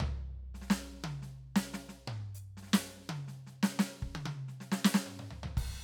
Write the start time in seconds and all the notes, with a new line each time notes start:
0.00 kick, floor tom
0.54 snare
0.61 snare
0.67 snare
0.70 snare
1.04 high tom
1.22 snare
1.56 snare
1.74 snare
1.89 snare
2.07 mid tom
2.35 hi-hat pedal
2.57 snare
2.62 snare
2.67 snare
2.73 snare
3.09 high tom
3.28 snare
3.47 snare
3.63 snare
3.79 snare
4.02 kick
4.15 high tom
4.26 high tom
4.48 snare
4.60 snare
4.72 snare
4.84 snare
4.94 snare
5.06 mid tom
5.19 mid tom
5.31 floor tom
5.43 floor tom
5.57 kick, crash